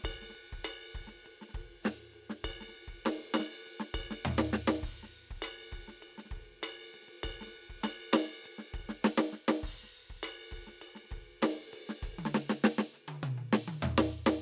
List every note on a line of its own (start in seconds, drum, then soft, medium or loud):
0.01 kick medium
0.01 hi-hat pedal medium
0.05 ride bell loud
0.10 kick soft
0.16 kick soft
0.22 snare soft
0.30 snare soft
0.35 ride soft
0.53 kick soft
0.58 kick soft
0.64 cross-stick medium
0.64 hi-hat pedal medium
0.64 ride bell loud
0.95 kick soft
0.95 ride medium
1.01 kick soft
1.07 snare soft
1.24 hi-hat pedal medium
1.24 ride medium
1.42 snare soft
1.49 snare soft
1.54 kick soft
1.54 ride medium
1.61 kick soft
1.83 snare medium
1.83 hi-hat pedal medium
1.83 ride medium
1.83 floor tom soft
2.14 ride soft
2.30 snare medium
2.43 kick soft
2.43 hi-hat pedal soft
2.43 ride bell loud
2.51 kick soft
2.61 snare soft
2.68 snare soft
2.75 ride soft
2.88 kick soft
3.05 snare loud
3.05 hi-hat pedal medium
3.05 ride loud
3.34 snare loud
3.34 ride bell loud
3.40 snare medium
3.65 hi-hat pedal soft
3.65 ride soft
3.80 snare medium
3.92 kick medium
3.92 hi-hat pedal soft
3.92 ride bell loud
4.01 kick soft
4.06 kick soft
4.11 snare medium
4.25 hi-hat pedal medium
4.25 floor tom loud
4.38 snare loud
4.53 snare medium
4.68 snare loud
4.81 kick medium
4.81 hi-hat pedal soft
4.81 crash medium
4.89 kick soft
4.94 kick soft
5.03 snare soft
5.31 kick soft
5.36 kick soft
5.42 cross-stick medium
5.42 hi-hat pedal medium
5.42 ride bell loud
5.72 kick soft
5.72 ride medium
5.78 kick soft
5.88 snare soft
6.01 hi-hat pedal soft
6.01 ride bell medium
6.18 snare soft
6.25 snare soft
6.31 kick soft
6.31 ride medium
6.38 kick soft
6.62 cross-stick medium
6.62 hi-hat pedal medium
6.62 ride bell loud
6.94 snare soft
6.94 ride medium
7.03 snare soft
7.08 ride medium
7.23 kick soft
7.23 hi-hat pedal medium
7.23 ride bell loud
7.31 kick soft
7.41 snare soft
7.47 snare soft
7.56 ride soft
7.70 kick soft
7.81 snare medium
7.81 hi-hat pedal medium
7.81 ride bell loud
8.13 snare loud
8.13 ride bell loud
8.44 hi-hat pedal medium
8.44 ride medium
8.59 snare soft
8.74 kick soft
8.74 ride bell medium
8.81 kick soft
8.89 snare medium
9.02 snare loud
9.02 hi-hat pedal medium
9.18 snare loud
9.33 snare soft
9.48 snare loud
9.63 kick soft
9.63 hi-hat pedal medium
9.63 crash medium
9.74 kick soft
9.83 snare soft
10.10 kick soft
10.23 cross-stick medium
10.23 hi-hat pedal medium
10.23 ride bell loud
10.52 kick soft
10.52 ride medium
10.58 kick soft
10.67 snare soft
10.81 hi-hat pedal medium
10.81 ride bell medium
10.95 snare soft
11.04 snare soft
11.11 kick soft
11.11 ride medium
11.18 kick soft
11.42 snare loud
11.42 hi-hat pedal medium
11.42 ride loud
11.73 hi-hat pedal medium
11.73 ride medium
11.89 snare medium
12.03 kick medium
12.03 hi-hat pedal loud
12.10 kick soft
12.19 high tom medium
12.26 snare medium
12.26 hi-hat pedal medium
12.35 snare loud
12.50 snare medium
12.62 snare loud
12.62 hi-hat pedal soft
12.79 snare loud
12.94 hi-hat pedal medium
13.08 high tom medium
13.23 hi-hat pedal loud
13.23 mid tom loud
13.38 high tom medium
13.53 snare loud
13.53 hi-hat pedal medium
13.68 high tom medium
13.68 high tom soft
13.81 hi-hat pedal medium
13.81 floor tom loud
13.98 snare loud
14.09 kick soft
14.09 hi-hat pedal medium
14.27 snare loud